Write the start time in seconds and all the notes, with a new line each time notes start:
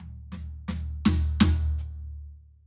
0.00 floor tom
0.32 snare, floor tom
0.68 snare, floor tom
1.05 snare, floor tom
1.40 snare, floor tom
1.78 hi-hat pedal